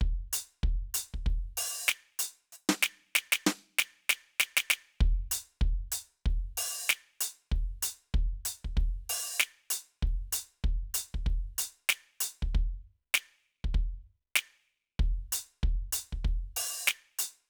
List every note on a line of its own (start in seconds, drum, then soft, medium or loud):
0.01 kick medium
0.33 closed hi-hat loud
0.63 kick medium
0.94 closed hi-hat loud
1.14 kick soft
1.26 kick medium
1.26 crash soft
1.57 open hi-hat loud
1.88 snare loud
1.88 hi-hat pedal medium
2.19 closed hi-hat loud
2.52 hi-hat pedal medium
2.69 snare loud
2.83 snare loud
3.15 snare loud
3.32 snare loud
3.47 snare loud
3.79 snare loud
4.10 snare loud
4.40 snare loud
4.57 snare loud
4.70 snare loud
5.01 kick medium
5.31 closed hi-hat loud
5.61 kick medium
5.92 closed hi-hat loud
6.26 kick medium
6.30 crash soft
6.57 open hi-hat loud
6.89 snare loud
6.89 hi-hat pedal medium
7.21 closed hi-hat loud
7.52 kick medium
7.56 crash soft
7.83 closed hi-hat loud
8.14 kick medium
8.45 closed hi-hat loud
8.65 kick soft
8.77 kick medium
8.77 crash soft
9.09 open hi-hat loud
9.40 snare loud
9.40 hi-hat pedal medium
9.70 closed hi-hat loud
10.03 kick medium
10.07 crash soft
10.33 closed hi-hat loud
10.64 kick medium
10.94 closed hi-hat loud
11.14 kick medium
11.26 kick medium
11.26 crash soft
11.58 open hi-hat loud
11.89 snare loud
11.89 hi-hat pedal medium
12.20 closed hi-hat loud
12.42 kick medium
12.55 kick medium
13.14 snare loud
13.64 kick medium
13.74 kick medium
14.36 snare loud
14.99 kick medium
14.99 crash soft
15.32 closed hi-hat loud
15.63 kick medium
15.93 closed hi-hat loud
16.13 kick soft
16.25 kick medium
16.25 crash soft
16.56 open hi-hat loud
16.87 snare loud
16.87 hi-hat pedal medium
17.19 closed hi-hat loud